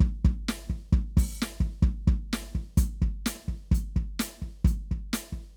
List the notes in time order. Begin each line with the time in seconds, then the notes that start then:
0.01 kick
0.25 kick
0.49 snare
0.65 snare
0.70 kick
0.93 kick
1.17 open hi-hat, kick
1.39 snare, hi-hat pedal
1.61 kick
1.83 kick
2.08 kick
2.33 snare
2.42 snare
2.55 kick
2.78 closed hi-hat, kick
3.02 kick
3.26 closed hi-hat, snare
3.36 snare
3.49 kick
3.72 closed hi-hat, kick
3.97 kick
4.20 closed hi-hat, snare
4.28 snare
4.42 kick
4.65 closed hi-hat, kick
4.92 kick
5.14 closed hi-hat, snare
5.33 kick